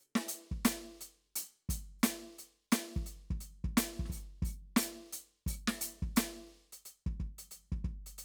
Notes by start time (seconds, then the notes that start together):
0.00 hi-hat pedal
0.15 snare
0.28 closed hi-hat
0.51 kick
0.65 closed hi-hat, snare
1.01 closed hi-hat
1.36 closed hi-hat
1.69 closed hi-hat, kick
1.99 hi-hat pedal
2.03 closed hi-hat, snare
2.39 closed hi-hat
2.72 closed hi-hat, snare
2.95 kick, hi-hat pedal
3.06 closed hi-hat
3.30 kick
3.41 closed hi-hat
3.64 kick
3.77 closed hi-hat, snare
3.99 kick
4.05 snare
4.10 open hi-hat, kick
4.17 snare
4.42 open hi-hat, kick, hi-hat pedal
4.76 open hi-hat, snare, hi-hat pedal
5.13 closed hi-hat
5.46 open hi-hat, kick
5.51 hi-hat pedal
5.68 snare
5.81 closed hi-hat
6.02 kick
6.16 closed hi-hat, snare
6.72 closed hi-hat
6.85 closed hi-hat
7.06 kick
7.20 kick
7.38 closed hi-hat
7.51 closed hi-hat
7.72 kick
7.84 kick
8.06 closed hi-hat
8.18 closed hi-hat